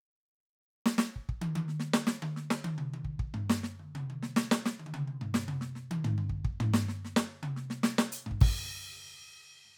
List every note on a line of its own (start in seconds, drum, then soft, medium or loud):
0.86 snare loud
0.98 snare loud
0.98 hi-hat pedal soft
1.16 kick soft
1.29 kick medium
1.42 high tom loud
1.55 high tom loud
1.68 snare soft
1.80 snare medium
1.93 snare loud
2.07 snare loud
2.22 high tom loud
2.36 snare soft
2.50 snare loud
2.64 high tom loud
2.78 mid tom loud
2.94 high tom medium
3.05 kick soft
3.19 kick medium
3.34 floor tom loud
3.50 snare loud
3.63 snare medium
3.79 high tom soft
3.95 mid tom loud
4.10 high tom medium
4.23 snare medium
4.36 snare loud
4.51 snare loud
4.66 snare loud
4.80 high tom medium
4.86 high tom medium
4.94 mid tom loud
5.08 mid tom medium
5.21 floor tom medium
5.34 snare loud
5.48 mid tom loud
5.61 snare medium
5.75 snare soft
5.91 high tom loud
6.04 floor tom loud
6.18 high tom soft
6.29 kick medium
6.45 kick medium
6.60 floor tom loud
6.74 snare loud
6.88 snare medium
7.05 snare soft
7.16 snare loud
7.43 mid tom loud
7.56 snare soft
7.70 snare medium
7.83 snare loud
7.98 snare loud
8.12 closed hi-hat loud
8.26 floor tom loud
8.31 kick soft
8.41 kick loud
8.41 crash loud
9.65 floor tom soft